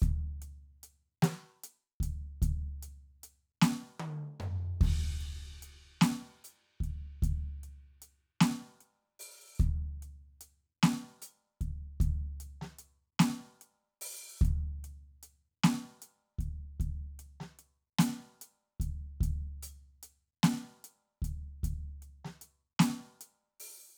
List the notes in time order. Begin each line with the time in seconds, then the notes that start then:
0.01 kick, closed hi-hat, hi-hat pedal
0.42 closed hi-hat
0.84 closed hi-hat
1.23 snare, closed hi-hat
1.64 closed hi-hat
2.01 kick, closed hi-hat
2.43 kick, closed hi-hat
2.83 closed hi-hat
3.24 closed hi-hat
3.62 open hi-hat, snare
4.00 high tom
4.41 floor tom, hi-hat pedal
4.82 kick, crash
5.21 closed hi-hat
5.63 closed hi-hat
6.02 closed hi-hat, snare
6.45 closed hi-hat
6.81 kick, closed hi-hat
7.23 kick, closed hi-hat
7.64 closed hi-hat
8.01 snare, closed hi-hat
8.41 closed hi-hat, snare
8.81 closed hi-hat
9.20 open hi-hat
9.59 kick, closed hi-hat, hi-hat pedal
10.03 closed hi-hat
10.42 closed hi-hat
10.84 snare, closed hi-hat
11.22 closed hi-hat
11.62 kick, closed hi-hat
12.01 kick, closed hi-hat
12.41 closed hi-hat
12.62 snare
12.79 closed hi-hat
13.20 closed hi-hat, snare
13.36 snare
13.62 closed hi-hat
14.02 open hi-hat
14.40 kick, hi-hat pedal
14.46 closed hi-hat
14.85 closed hi-hat
15.23 closed hi-hat
15.64 snare, closed hi-hat
16.02 closed hi-hat
16.39 kick, closed hi-hat
16.80 kick, closed hi-hat
17.20 closed hi-hat
17.41 snare
17.59 closed hi-hat
17.99 closed hi-hat, snare
18.42 closed hi-hat
18.80 kick, closed hi-hat
19.21 kick, closed hi-hat
19.63 closed hi-hat
20.04 closed hi-hat
20.44 snare, closed hi-hat
20.85 closed hi-hat
21.23 kick, closed hi-hat
21.64 kick, closed hi-hat
22.03 closed hi-hat
22.25 snare
22.42 closed hi-hat
22.80 closed hi-hat, snare
23.21 closed hi-hat
23.61 open hi-hat